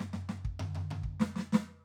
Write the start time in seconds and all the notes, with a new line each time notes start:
0.01 snare, floor tom, hi-hat pedal
0.14 snare, floor tom
0.29 snare, floor tom
0.45 kick
0.60 floor tom, high tom
0.75 floor tom, high tom
0.91 floor tom, high tom
1.04 kick
1.20 snare
1.36 snare
1.39 snare
1.53 snare
1.55 snare